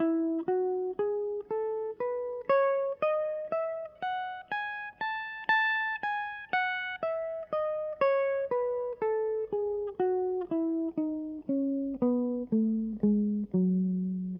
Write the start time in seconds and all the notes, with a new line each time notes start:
0.00 E4
0.48 F#4
0.99 G#4
1.51 A4
2.00 B4
2.49 C#5
3.02 D#5
3.52 E5
4.02 F#5
4.52 G#5
5.01 A5
5.49 A5
6.03 G#5
6.53 F#5
7.03 E5
7.53 D#5
8.01 C#5
8.51 B4
9.02 A4
9.53 G#4
10.00 F#4
10.51 E4
10.98 D#4
11.49 C#4
12.02 B3
12.53 A3
13.04 G#3
13.54 F#3